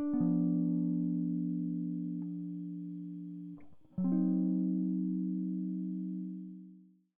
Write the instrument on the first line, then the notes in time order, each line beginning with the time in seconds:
electric guitar
0.00 D4
0.14 B3
0.22 F3
3.99 F#3
4.05 C4
4.12 D#4